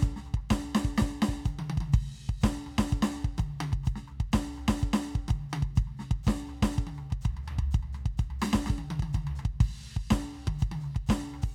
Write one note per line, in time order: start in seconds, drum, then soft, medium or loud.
0.01 kick loud
0.01 hi-hat pedal medium
0.16 snare medium
0.23 floor tom medium
0.23 hi-hat pedal soft
0.34 kick medium
0.34 floor tom medium
0.50 kick medium
0.50 snare loud
0.50 hi-hat pedal medium
0.63 floor tom medium
0.70 hi-hat pedal soft
0.75 snare loud
0.85 kick medium
0.85 floor tom soft
0.96 snare loud
0.96 hi-hat pedal medium
1.02 kick medium
1.10 floor tom medium
1.19 snare loud
1.19 hi-hat pedal soft
1.29 kick medium
1.33 floor tom medium
1.45 kick medium
1.45 hi-hat pedal medium
1.45 high tom loud
1.59 high tom loud
1.65 hi-hat pedal soft
1.70 high tom loud
1.78 kick medium
1.78 high tom loud
1.93 kick loud
1.93 hi-hat pedal medium
1.93 crash medium
2.15 hi-hat pedal soft
2.29 kick medium
2.41 kick loud
2.41 snare loud
2.41 hi-hat pedal medium
2.55 floor tom medium
2.67 floor tom medium
2.78 kick medium
2.78 snare loud
2.89 kick medium
2.89 floor tom medium
2.89 hi-hat pedal medium
3.02 snare loud
3.14 floor tom medium
3.25 kick medium
3.25 floor tom medium
3.38 kick medium
3.38 hi-hat pedal medium
3.38 high tom loud
3.50 floor tom soft
3.59 hi-hat pedal soft
3.59 high tom loud
3.72 kick medium
3.72 floor tom medium
3.84 kick medium
3.84 floor tom medium
3.84 hi-hat pedal medium
3.96 snare medium
4.07 floor tom medium
4.07 hi-hat pedal soft
4.20 kick medium
4.20 floor tom medium
4.32 kick medium
4.32 snare loud
4.32 hi-hat pedal medium
4.46 floor tom soft
4.54 floor tom medium
4.54 hi-hat pedal soft
4.68 kick medium
4.68 snare loud
4.79 floor tom medium
4.79 hi-hat pedal medium
4.83 kick medium
4.94 snare loud
5.00 hi-hat pedal soft
5.05 floor tom soft
5.15 kick medium
5.15 floor tom medium
5.28 kick medium
5.28 hi-hat pedal medium
5.28 high tom loud
5.41 floor tom medium
5.50 hi-hat pedal soft
5.50 high tom loud
5.62 kick medium
5.62 floor tom medium
5.76 kick loud
5.76 hi-hat pedal medium
5.87 floor tom medium
5.97 snare medium
5.97 hi-hat pedal soft
6.11 kick medium
6.11 floor tom medium
6.23 kick medium
6.23 hi-hat pedal medium
6.28 snare loud
6.37 floor tom soft
6.46 floor tom medium
6.46 hi-hat pedal soft
6.63 kick medium
6.63 snare loud
6.72 floor tom medium
6.72 hi-hat pedal medium
6.78 kick medium
6.87 high tom loud
6.95 floor tom medium
6.95 hi-hat pedal soft
7.10 kick medium
7.10 floor tom medium
7.21 kick medium
7.21 floor tom loud
7.21 hi-hat pedal medium
7.37 floor tom loud
7.44 hi-hat pedal soft
7.48 floor tom loud
7.59 kick medium
7.59 floor tom loud
7.71 kick loud
7.71 hi-hat pedal medium
7.83 floor tom medium
7.93 floor tom medium
7.93 hi-hat pedal soft
8.06 kick medium
8.18 kick medium
8.18 snare soft
8.18 hi-hat pedal medium
8.30 floor tom medium
8.39 snare loud
8.39 hi-hat pedal soft
8.53 kick medium
8.53 snare loud
8.65 snare loud
8.65 hi-hat pedal medium
8.70 kick medium
8.78 high tom loud
8.87 hi-hat pedal soft
8.87 high tom loud
9.00 kick medium
9.00 high tom loud
9.13 kick medium
9.13 hi-hat pedal medium
9.13 high tom loud
9.27 floor tom loud
9.36 floor tom loud
9.36 hi-hat pedal medium
9.45 kick medium
9.61 kick loud
9.61 hi-hat pedal medium
9.61 crash loud
9.83 hi-hat pedal soft
9.97 kick medium
9.97 floor tom soft
10.11 kick medium
10.11 snare loud
10.11 hi-hat pedal medium
10.23 floor tom medium
10.32 floor tom medium
10.32 hi-hat pedal soft
10.47 kick medium
10.47 high tom loud
10.59 kick medium
10.59 floor tom medium
10.59 hi-hat pedal medium
10.72 high tom loud
10.80 floor tom medium
10.80 hi-hat pedal soft
10.95 kick medium
10.95 floor tom medium
11.07 kick medium
11.07 snare loud
11.07 hi-hat pedal medium
11.21 floor tom medium
11.29 hi-hat pedal soft
11.34 floor tom medium
11.42 open hi-hat loud
11.42 kick medium